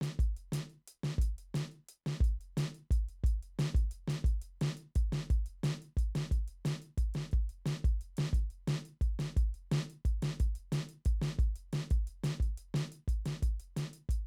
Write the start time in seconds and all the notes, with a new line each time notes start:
0.01 snare, closed hi-hat
0.19 kick, closed hi-hat
0.36 closed hi-hat
0.52 snare, closed hi-hat
0.69 closed hi-hat
0.87 closed hi-hat
1.03 snare, closed hi-hat
1.18 kick, closed hi-hat
1.38 closed hi-hat
1.54 closed hi-hat, snare
1.71 closed hi-hat
1.88 closed hi-hat
2.06 snare, closed hi-hat
2.20 kick, closed hi-hat
2.41 closed hi-hat
2.57 closed hi-hat, snare
2.74 closed hi-hat
2.90 kick, closed hi-hat
3.08 closed hi-hat
3.23 kick, closed hi-hat
3.42 closed hi-hat
3.59 snare, closed hi-hat
3.74 kick, closed hi-hat
3.91 closed hi-hat
4.07 snare, closed hi-hat
4.24 kick, closed hi-hat
4.41 closed hi-hat
4.61 snare, closed hi-hat
4.77 closed hi-hat
4.95 kick, closed hi-hat
5.12 snare, closed hi-hat
5.30 kick, closed hi-hat
5.46 closed hi-hat
5.63 closed hi-hat, snare
5.82 closed hi-hat
5.97 kick, closed hi-hat
6.15 snare, closed hi-hat
6.31 kick, closed hi-hat
6.47 closed hi-hat
6.65 snare, closed hi-hat
6.82 closed hi-hat
6.97 kick, closed hi-hat
7.14 snare, closed hi-hat
7.31 kick, closed hi-hat
7.49 closed hi-hat
7.66 snare, closed hi-hat
7.84 kick, closed hi-hat
8.01 closed hi-hat
8.17 snare, closed hi-hat
8.33 kick, closed hi-hat
8.50 closed hi-hat
8.67 snare, closed hi-hat
8.85 closed hi-hat
9.01 kick, closed hi-hat
9.19 snare, closed hi-hat
9.36 kick, closed hi-hat
9.54 closed hi-hat
9.71 snare, closed hi-hat
9.90 closed hi-hat
10.05 kick, closed hi-hat
10.22 snare, closed hi-hat
10.40 kick, closed hi-hat
10.55 closed hi-hat
10.72 snare, closed hi-hat
10.89 closed hi-hat
11.05 kick, closed hi-hat
11.22 snare, closed hi-hat
11.38 kick, closed hi-hat
11.55 closed hi-hat
11.72 snare, closed hi-hat
11.90 kick, closed hi-hat
12.07 closed hi-hat
12.24 snare, closed hi-hat
12.40 kick, closed hi-hat
12.57 closed hi-hat
12.74 snare, closed hi-hat
12.92 closed hi-hat
13.08 kick, closed hi-hat
13.25 snare, closed hi-hat
13.42 kick, closed hi-hat
13.59 closed hi-hat
13.76 snare, closed hi-hat
13.93 closed hi-hat
14.09 kick, closed hi-hat